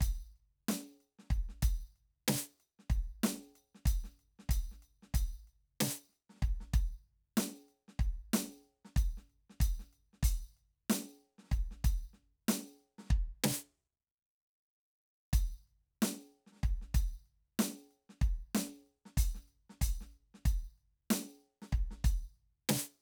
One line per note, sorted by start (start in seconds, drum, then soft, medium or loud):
0.01 kick medium
0.01 closed hi-hat loud
0.36 closed hi-hat soft
0.69 snare loud
0.69 closed hi-hat loud
1.01 closed hi-hat soft
1.19 snare soft
1.23 snare soft
1.31 kick medium
1.31 closed hi-hat soft
1.49 snare soft
1.63 kick medium
1.63 closed hi-hat loud
1.96 closed hi-hat soft
2.28 snare loud
2.28 closed hi-hat loud
2.60 closed hi-hat soft
2.79 snare soft
2.90 kick medium
2.90 closed hi-hat medium
3.24 snare loud
3.24 closed hi-hat loud
3.56 closed hi-hat soft
3.75 snare soft
3.86 kick medium
3.86 closed hi-hat loud
4.04 snare soft
4.20 closed hi-hat soft
4.39 snare soft
4.49 kick medium
4.49 closed hi-hat loud
4.72 snare soft
4.83 closed hi-hat soft
5.03 snare soft
5.14 kick medium
5.14 closed hi-hat loud
5.48 closed hi-hat soft
5.81 closed hi-hat loud
5.81 snare loud
6.09 snare soft
6.13 closed hi-hat soft
6.30 snare soft
6.34 snare soft
6.37 snare soft
6.43 kick medium
6.43 closed hi-hat soft
6.61 snare soft
6.74 kick medium
6.74 closed hi-hat medium
7.38 snare loud
7.38 closed hi-hat loud
7.69 closed hi-hat soft
7.88 snare soft
8.00 kick medium
8.00 closed hi-hat soft
8.34 closed hi-hat loud
8.34 snare loud
8.65 closed hi-hat soft
8.85 snare soft
8.97 kick medium
8.97 closed hi-hat medium
9.18 snare soft
9.30 closed hi-hat soft
9.50 snare soft
9.61 kick medium
9.61 closed hi-hat loud
9.80 snare soft
9.93 closed hi-hat soft
10.13 snare soft
10.23 closed hi-hat loud
10.23 kick medium
10.57 closed hi-hat soft
10.90 closed hi-hat loud
10.90 snare loud
11.39 snare soft
11.43 snare soft
11.47 snare soft
11.49 kick medium
11.49 snare soft
11.52 snare soft
11.52 closed hi-hat medium
11.71 snare soft
11.85 kick medium
11.85 closed hi-hat loud
12.14 snare soft
12.49 closed hi-hat loud
12.49 snare loud
12.81 closed hi-hat soft
12.99 snare soft
13.03 snare soft
13.06 snare soft
13.11 kick medium
13.44 snare loud
15.33 kick medium
15.33 closed hi-hat loud
15.68 closed hi-hat soft
16.03 closed hi-hat loud
16.03 snare loud
16.47 snare soft
16.53 snare soft
16.55 snare soft
16.57 snare soft
16.64 kick medium
16.64 closed hi-hat soft
16.82 snare soft
16.95 kick medium
16.95 closed hi-hat loud
17.26 closed hi-hat soft
17.59 closed hi-hat loud
17.59 snare loud
17.91 closed hi-hat soft
18.10 snare soft
18.22 kick medium
18.22 closed hi-hat soft
18.55 closed hi-hat medium
18.55 snare loud
18.87 closed hi-hat soft
19.06 snare soft
19.18 closed hi-hat loud
19.18 kick medium
19.35 snare soft
19.48 closed hi-hat soft
19.70 snare soft
19.82 closed hi-hat loud
19.82 kick medium
20.01 snare soft
20.14 closed hi-hat soft
20.35 snare soft
20.46 kick medium
20.46 closed hi-hat loud
20.78 closed hi-hat soft
21.11 closed hi-hat loud
21.11 snare loud
21.42 closed hi-hat soft
21.62 snare medium
21.73 kick medium
21.73 closed hi-hat soft
21.91 snare soft
22.05 closed hi-hat medium
22.05 kick medium
22.36 closed hi-hat soft
22.69 closed hi-hat loud
22.69 snare loud